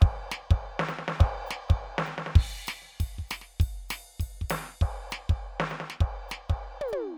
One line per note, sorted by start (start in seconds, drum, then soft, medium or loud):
0.01 kick loud
0.01 crash loud
0.31 snare loud
0.31 hi-hat pedal medium
0.51 kick loud
0.51 crash medium
0.80 snare loud
0.89 snare medium
0.89 hi-hat pedal medium
0.99 snare medium
1.08 snare loud
1.20 kick loud
1.20 crash loud
1.47 hi-hat pedal medium
1.51 snare loud
1.69 kick loud
1.69 crash medium
1.98 snare loud
2.06 snare soft
2.06 hi-hat pedal medium
2.18 snare medium
2.27 snare medium
2.36 kick loud
2.36 crash loud
2.66 snare loud
2.66 hi-hat pedal medium
2.66 ride medium
2.82 snare soft
3.00 kick medium
3.00 ride medium
3.19 kick soft
3.29 snare loud
3.29 hi-hat pedal medium
3.29 ride medium
3.42 snare soft
3.60 kick loud
3.60 ride medium
3.89 snare loud
3.89 hi-hat pedal medium
3.89 ride loud
4.20 kick medium
4.20 ride medium
4.42 kick medium
4.49 snare loud
4.49 hi-hat pedal medium
4.49 ride loud
4.54 kick soft
4.82 kick medium
4.82 crash medium
5.10 snare loud
5.10 hi-hat pedal medium
5.30 kick medium
5.30 crash medium
5.60 snare loud
5.69 snare medium
5.69 hi-hat pedal medium
5.80 snare medium
5.90 snare medium
6.01 kick medium
6.01 crash medium
6.29 snare loud
6.29 hi-hat pedal medium
6.49 kick medium
6.49 crash medium
6.81 high tom loud
6.88 hi-hat pedal medium
6.93 high tom loud